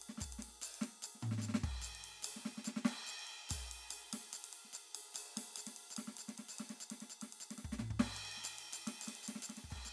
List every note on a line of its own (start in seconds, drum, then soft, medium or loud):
0.02 ride medium
0.09 snare soft
0.17 kick soft
0.17 snare soft
0.17 percussion medium
0.22 ride medium
0.32 ride medium
0.38 snare soft
0.38 ride medium
0.38 percussion soft
0.48 snare soft
0.62 ride medium
0.62 percussion loud
0.74 ride medium
0.81 snare medium
0.81 ride medium
0.81 percussion medium
1.02 ride medium
1.02 percussion loud
1.15 snare soft
1.21 floor tom medium
1.21 percussion soft
1.31 snare soft
1.38 snare soft
1.38 percussion medium
1.43 snare soft
1.49 snare soft
1.54 snare medium
1.60 kick medium
1.60 percussion soft
1.64 ride medium
1.82 ride medium
1.82 percussion medium
1.95 ride medium
2.01 ride medium
2.01 percussion soft
2.22 ride loud
2.22 percussion loud
2.36 snare soft
2.45 snare soft
2.57 snare soft
2.65 snare soft
2.65 percussion loud
2.76 snare medium
2.84 snare medium
2.84 percussion soft
2.84 ride medium
3.07 ride medium
3.07 percussion medium
3.19 ride soft
3.27 ride medium
3.49 kick soft
3.49 ride loud
3.49 percussion loud
3.68 ride medium
3.68 percussion soft
3.90 ride loud
3.90 percussion medium
4.10 snare soft
4.10 ride loud
4.10 percussion soft
4.33 ride medium
4.33 percussion medium
4.44 ride medium
4.53 ride medium
4.64 snare soft
4.73 ride medium
4.73 percussion medium
4.92 ride loud
4.92 percussion soft
5.14 ride loud
5.14 percussion loud
5.37 snare soft
5.37 ride loud
5.56 ride loud
5.56 percussion medium
5.67 snare soft
5.67 ride medium
5.76 ride medium
5.90 percussion medium
5.96 snare soft
5.96 ride loud
6.07 snare soft
6.17 ride medium
6.17 percussion medium
6.28 snare soft
6.28 ride medium
6.38 snare soft
6.38 ride medium
6.49 percussion medium
6.58 snare soft
6.58 ride medium
6.69 snare soft
6.69 ride medium
6.80 percussion loud
6.90 snare soft
6.90 ride medium
7.00 snare soft
7.00 ride medium
7.10 percussion medium
7.21 snare soft
7.21 ride medium
7.33 ride medium
7.40 percussion medium
7.50 snare soft
7.50 ride medium
7.58 snare soft
7.58 ride medium
7.64 kick soft
7.72 snare soft
7.72 floor tom soft
7.79 snare soft
7.79 floor tom medium
7.90 kick soft
7.99 snare medium
7.99 ride medium
8.14 ride medium
8.14 percussion medium
8.25 ride soft
8.32 ride medium
8.37 snare soft
8.44 ride medium
8.44 percussion loud
8.58 ride medium
8.58 percussion soft
8.73 ride medium
8.73 percussion loud
8.86 snare soft
8.86 ride medium
8.86 percussion soft
9.01 ride medium
9.01 percussion medium
9.07 snare soft
9.07 ride medium
9.15 ride medium
9.23 percussion medium
9.28 snare soft
9.28 ride medium
9.35 snare soft
9.42 ride medium
9.42 percussion loud
9.49 snare soft
9.49 ride medium
9.57 snare soft
9.57 ride medium
9.64 kick soft
9.70 kick soft
9.70 percussion soft
9.70 ride medium
9.77 snare soft
9.85 snare soft
9.85 percussion medium